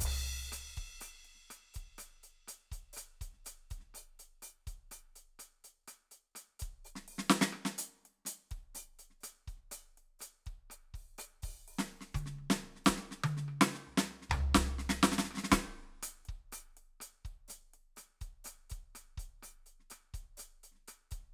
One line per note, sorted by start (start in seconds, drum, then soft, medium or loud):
0.01 kick soft
0.01 hi-hat pedal loud
0.05 kick soft
0.05 crash loud
0.12 kick soft
0.52 closed hi-hat medium
0.52 cross-stick medium
0.52 snare soft
0.78 kick soft
0.78 closed hi-hat soft
1.01 open hi-hat medium
1.01 cross-stick soft
1.25 closed hi-hat soft
1.35 snare soft
1.50 closed hi-hat medium
1.50 cross-stick soft
1.50 snare soft
1.74 closed hi-hat soft
1.74 kick soft
1.98 closed hi-hat medium
1.98 cross-stick soft
1.98 snare soft
1.98 hi-hat pedal medium
2.24 closed hi-hat soft
2.48 closed hi-hat medium
2.48 cross-stick soft
2.72 closed hi-hat soft
2.72 kick soft
2.94 cross-stick soft
2.94 hi-hat pedal medium
2.98 closed hi-hat medium
3.21 closed hi-hat soft
3.21 kick soft
3.31 snare soft
3.33 snare soft
3.45 closed hi-hat medium
3.45 cross-stick soft
3.45 hi-hat pedal soft
3.71 closed hi-hat soft
3.71 kick soft
3.78 snare soft
3.80 snare soft
3.95 open hi-hat medium
3.95 cross-stick soft
3.95 hi-hat pedal soft
4.20 closed hi-hat soft
4.43 open hi-hat medium
4.43 cross-stick soft
4.67 closed hi-hat soft
4.67 kick soft
4.92 open hi-hat medium
4.92 cross-stick soft
5.16 closed hi-hat soft
5.40 closed hi-hat medium
5.40 cross-stick soft
5.65 closed hi-hat soft
5.88 closed hi-hat medium
5.88 cross-stick soft
5.88 snare soft
6.12 closed hi-hat soft
6.35 closed hi-hat medium
6.35 cross-stick soft
6.35 snare soft
6.60 open hi-hat medium
6.60 kick soft
6.85 open hi-hat soft
6.85 hi-hat pedal soft
6.96 snare soft
7.08 open hi-hat soft
7.19 snare medium
7.30 snare loud
7.42 snare loud
7.53 cross-stick medium
7.66 snare medium
7.66 hi-hat pedal soft
7.79 closed hi-hat loud
8.06 closed hi-hat soft
8.26 closed hi-hat loud
8.26 snare soft
8.51 kick soft
8.51 closed hi-hat soft
8.58 snare soft
8.75 open hi-hat medium
8.75 snare soft
8.75 hi-hat pedal soft
8.99 closed hi-hat soft
9.11 snare soft
9.21 closed hi-hat medium
9.21 cross-stick soft
9.21 snare soft
9.21 hi-hat pedal soft
9.48 open hi-hat soft
9.48 kick soft
9.57 snare soft
9.72 open hi-hat medium
9.72 cross-stick soft
9.72 hi-hat pedal medium
9.98 closed hi-hat soft
10.20 closed hi-hat medium
10.20 cross-stick soft
10.20 snare soft
10.20 hi-hat pedal soft
10.47 kick soft
10.47 closed hi-hat soft
10.71 open hi-hat medium
10.71 cross-stick soft
10.71 hi-hat pedal soft
10.94 kick soft
10.94 open hi-hat soft
11.19 open hi-hat medium
11.19 cross-stick soft
11.19 hi-hat pedal medium
11.43 open hi-hat medium
11.43 kick soft
11.43 snare soft
11.49 kick soft
11.68 open hi-hat soft
11.79 snare loud
11.91 open hi-hat soft
12.01 snare soft
12.15 kick soft
12.15 hi-hat pedal soft
12.15 high tom medium
12.21 kick soft
12.25 kick soft
12.25 snare soft
12.39 high tom soft
12.51 snare loud
12.76 snare soft
12.85 snare loud
12.85 hi-hat pedal soft
12.89 kick soft
12.97 snare soft
13.12 snare soft
13.24 hi-hat pedal soft
13.24 high tom loud
13.37 snare soft
13.49 cross-stick soft
13.61 snare loud
13.75 snare soft
13.87 floor tom soft
13.98 snare loud
14.22 snare soft
14.30 kick soft
14.30 floor tom loud
14.55 kick soft
14.55 snare loud
14.62 kick soft
14.62 snare soft
14.79 snare soft
14.90 snare loud
15.03 snare loud
15.09 cross-stick soft
15.09 snare medium
15.19 snare loud
15.25 snare medium
15.31 cross-stick soft
15.31 snare soft
15.38 snare medium
15.44 snare medium
15.50 snare soft
15.52 kick medium
15.52 snare loud
15.52 hi-hat pedal medium
16.03 closed hi-hat loud
16.03 cross-stick medium
16.26 kick soft
16.26 closed hi-hat soft
16.52 open hi-hat medium
16.52 cross-stick medium
16.52 snare soft
16.52 hi-hat pedal soft
16.77 closed hi-hat soft
17.01 closed hi-hat medium
17.01 cross-stick soft
17.01 snare soft
17.25 kick soft
17.25 open hi-hat soft
17.48 closed hi-hat medium
17.48 snare soft
17.48 hi-hat pedal soft
17.74 closed hi-hat soft
17.97 closed hi-hat medium
17.97 cross-stick soft
17.97 snare soft
17.97 hi-hat pedal soft
18.21 open hi-hat soft
18.21 kick soft
18.45 closed hi-hat medium
18.45 cross-stick soft
18.45 snare soft
18.45 hi-hat pedal medium
18.70 closed hi-hat soft
18.70 kick soft
18.95 closed hi-hat medium
18.95 cross-stick soft
18.95 snare soft
19.18 closed hi-hat soft
19.18 kick soft
19.43 open hi-hat medium
19.43 cross-stick soft
19.43 snare soft
19.43 hi-hat pedal soft
19.67 closed hi-hat soft
19.80 snare soft
19.91 closed hi-hat medium
19.91 cross-stick soft
19.91 snare soft
20.14 closed hi-hat soft
20.14 kick soft
20.23 snare soft
20.38 closed hi-hat medium
20.38 cross-stick soft
20.38 hi-hat pedal medium
20.64 closed hi-hat soft
20.72 snare soft
20.75 snare soft
20.88 closed hi-hat medium
20.88 cross-stick soft
21.11 closed hi-hat soft
21.11 kick soft
21.20 snare soft
21.23 snare soft